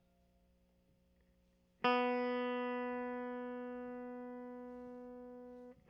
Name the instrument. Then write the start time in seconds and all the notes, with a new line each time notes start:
electric guitar
1.85 B3